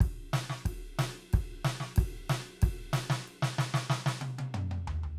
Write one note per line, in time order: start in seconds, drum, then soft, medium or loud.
0.00 kick loud
0.00 ride medium
0.33 snare loud
0.33 ride medium
0.50 snare medium
0.65 kick loud
0.65 ride loud
0.99 snare loud
0.99 ride loud
1.33 kick loud
1.33 ride medium
1.65 snare loud
1.65 ride medium
1.80 snare medium
1.96 kick loud
1.96 ride loud
2.29 snare loud
2.29 ride loud
2.62 kick loud
2.62 ride loud
2.93 snare loud
2.93 ride loud
3.10 snare loud
3.28 ride medium
3.42 snare loud
3.58 snare loud
3.74 snare loud
3.90 snare loud
4.06 snare loud
4.21 high tom loud
4.38 high tom loud
4.54 mid tom loud
4.71 mid tom loud
4.87 floor tom loud
5.03 floor tom medium